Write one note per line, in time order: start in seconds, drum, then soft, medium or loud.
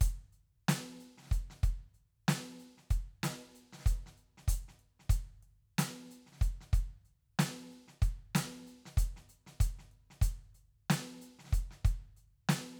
0.01 closed hi-hat medium
0.01 kick medium
0.33 closed hi-hat soft
0.69 closed hi-hat medium
0.69 snare loud
1.00 closed hi-hat soft
1.18 snare soft
1.22 snare soft
1.25 snare soft
1.27 snare soft
1.32 closed hi-hat soft
1.32 kick medium
1.50 snare soft
1.63 closed hi-hat soft
1.63 kick medium
1.94 closed hi-hat soft
2.28 closed hi-hat medium
2.28 snare loud
2.60 closed hi-hat soft
2.78 snare soft
2.82 snare soft
2.91 closed hi-hat soft
2.91 kick medium
3.23 closed hi-hat medium
3.23 snare loud
3.55 closed hi-hat soft
3.73 snare soft
3.78 snare soft
3.81 snare soft
3.84 closed hi-hat medium
3.84 kick medium
3.84 snare soft
4.06 snare soft
4.17 closed hi-hat soft
4.38 snare soft
4.48 closed hi-hat loud
4.48 kick medium
4.68 snare soft
4.79 closed hi-hat soft
5.00 snare soft
5.10 closed hi-hat medium
5.10 kick medium
5.43 closed hi-hat soft
5.78 closed hi-hat loud
5.78 snare loud
6.11 closed hi-hat soft
6.27 snare soft
6.32 snare soft
6.35 snare soft
6.37 snare soft
6.41 closed hi-hat soft
6.41 kick medium
6.61 snare soft
6.73 closed hi-hat soft
6.73 kick medium
7.05 closed hi-hat soft
7.39 closed hi-hat medium
7.39 snare loud
7.71 closed hi-hat soft
7.88 snare soft
8.02 closed hi-hat medium
8.02 kick medium
8.35 closed hi-hat loud
8.35 snare loud
8.67 closed hi-hat soft
8.86 snare soft
8.97 closed hi-hat medium
8.97 kick medium
9.16 snare soft
9.29 closed hi-hat soft
9.47 snare soft
9.60 closed hi-hat medium
9.60 kick medium
9.79 snare soft
9.92 closed hi-hat soft
10.10 snare soft
10.22 closed hi-hat medium
10.22 kick medium
10.55 closed hi-hat soft
10.90 closed hi-hat medium
10.90 snare loud
11.22 closed hi-hat soft
11.39 snare soft
11.45 snare soft
11.48 snare soft
11.53 closed hi-hat medium
11.53 kick medium
11.71 snare soft
11.85 closed hi-hat soft
11.85 kick medium
12.17 closed hi-hat soft
12.49 closed hi-hat medium
12.49 snare loud